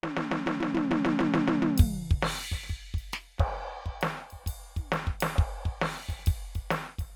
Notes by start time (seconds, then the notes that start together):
0.02 snare, floor tom
0.17 snare, floor tom
0.30 snare, floor tom
0.45 snare, floor tom
0.59 snare, floor tom
0.74 snare, floor tom
0.90 snare, floor tom
1.05 snare, floor tom
1.19 snare, floor tom
1.34 snare, floor tom
1.47 snare, floor tom
1.61 snare, floor tom
1.75 kick, ride
1.79 kick
2.11 kick
2.21 snare, crash
2.51 kick, snare
2.63 snare
2.68 kick, snare, ride bell
2.94 kick
2.98 ride
3.13 snare, ride
3.38 kick, snare, crash
3.48 snare
3.52 snare
3.56 snare
3.86 kick
4.01 snare, ride bell
4.30 kick, ride
4.43 kick, snare
4.47 ride
4.76 kick, ride, floor tom
4.92 snare, ride
5.07 kick
5.20 snare, ride
5.35 kick, crash
5.65 kick
5.80 snare, crash
6.08 kick, snare, ride bell
6.19 snare
6.25 kick, snare, ride
6.28 snare
6.31 snare
6.55 kick, ride
6.70 snare, ride
6.98 kick, snare, ride
7.10 snare